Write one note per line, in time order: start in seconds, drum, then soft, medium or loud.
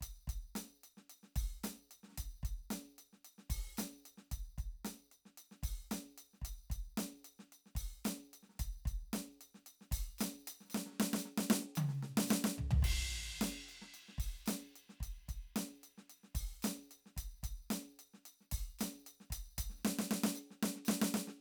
0.01 kick soft
0.01 closed hi-hat medium
0.28 kick soft
0.28 closed hi-hat medium
0.56 snare medium
0.56 closed hi-hat loud
0.84 closed hi-hat medium
0.97 snare soft
1.10 closed hi-hat medium
1.23 snare soft
1.36 kick soft
1.36 percussion medium
1.64 snare medium
1.64 closed hi-hat medium
1.64 hi-hat pedal medium
1.91 closed hi-hat medium
2.03 snare soft
2.08 snare soft
2.12 snare soft
2.18 kick soft
2.18 closed hi-hat medium
2.43 kick soft
2.43 closed hi-hat medium
2.71 snare medium
2.71 closed hi-hat medium
2.98 closed hi-hat medium
3.13 snare soft
3.25 closed hi-hat medium
3.38 snare soft
3.50 kick soft
3.50 percussion medium
3.78 snare medium
3.78 closed hi-hat loud
3.78 hi-hat pedal medium
4.06 closed hi-hat medium
4.18 snare soft
4.32 kick soft
4.32 closed hi-hat medium
4.58 kick soft
4.58 closed hi-hat soft
4.85 snare medium
4.85 closed hi-hat medium
5.12 closed hi-hat soft
5.26 snare soft
5.38 closed hi-hat medium
5.51 snare soft
5.63 kick soft
5.63 percussion medium
5.91 snare medium
5.91 closed hi-hat medium
5.91 hi-hat pedal medium
6.18 closed hi-hat medium
6.34 snare soft
6.42 kick soft
6.42 closed hi-hat medium
6.70 kick soft
6.70 closed hi-hat medium
6.98 snare medium
6.98 closed hi-hat medium
7.25 closed hi-hat medium
7.39 snare soft
7.52 closed hi-hat soft
7.66 snare soft
7.76 kick soft
7.76 percussion medium
8.05 snare medium
8.05 closed hi-hat medium
8.05 hi-hat pedal medium
8.33 closed hi-hat medium
8.43 snare soft
8.49 snare soft
8.55 snare soft
8.60 kick soft
8.60 snare soft
8.60 closed hi-hat medium
8.86 kick soft
8.86 closed hi-hat medium
9.13 snare medium
9.13 closed hi-hat medium
9.41 closed hi-hat medium
9.55 snare soft
9.67 closed hi-hat medium
9.81 snare soft
9.92 kick soft
9.92 percussion loud
10.19 snare medium
10.19 closed hi-hat loud
10.19 hi-hat pedal medium
10.48 closed hi-hat loud
10.61 snare soft
10.65 snare soft
10.69 snare soft
10.69 hi-hat pedal medium
10.75 snare medium
10.86 snare soft
10.90 snare soft
10.93 snare soft
10.96 snare soft
11.14 snare medium
11.19 hi-hat pedal medium
11.25 snare soft
11.38 snare loud
11.50 snare loud
11.76 hi-hat pedal medium
11.76 high tom loud
11.89 snare soft
12.03 snare medium
12.18 snare loud
12.28 snare loud
12.28 hi-hat pedal medium
12.44 snare loud
12.58 floor tom medium
12.71 floor tom loud
12.83 kick soft
12.83 ride loud
13.41 snare loud
13.41 closed hi-hat medium
13.69 closed hi-hat soft
13.82 snare soft
13.94 closed hi-hat medium
14.09 snare soft
14.18 kick soft
14.18 percussion medium
14.46 snare medium
14.46 closed hi-hat loud
14.46 hi-hat pedal medium
14.76 closed hi-hat medium
14.90 snare soft
15.01 kick soft
15.01 closed hi-hat medium
15.29 kick soft
15.29 closed hi-hat medium
15.56 snare medium
15.56 closed hi-hat medium
15.84 closed hi-hat medium
15.98 snare soft
16.10 closed hi-hat medium
16.24 snare soft
16.35 kick soft
16.35 percussion medium
16.63 snare medium
16.63 closed hi-hat loud
16.63 hi-hat pedal medium
16.91 closed hi-hat medium
17.06 snare soft
17.17 kick soft
17.17 closed hi-hat medium
17.43 kick soft
17.43 closed hi-hat medium
17.71 snare medium
17.71 closed hi-hat loud
17.99 closed hi-hat medium
18.14 snare soft
18.26 closed hi-hat medium
18.41 snare soft
18.52 kick soft
18.52 percussion loud
18.79 snare medium
18.79 closed hi-hat loud
18.79 hi-hat pedal medium
19.07 closed hi-hat medium
19.20 snare soft
19.30 kick soft
19.30 closed hi-hat loud
19.58 kick soft
19.58 closed hi-hat loud
19.70 snare soft
19.74 snare soft
19.78 snare soft
19.85 snare loud
19.99 snare medium
20.11 snare loud
20.24 snare loud
20.35 hi-hat pedal medium
20.51 snare soft
20.63 snare loud
20.76 snare soft
20.85 snare loud
20.85 hi-hat pedal medium
21.02 snare loud
21.14 snare loud
21.28 snare medium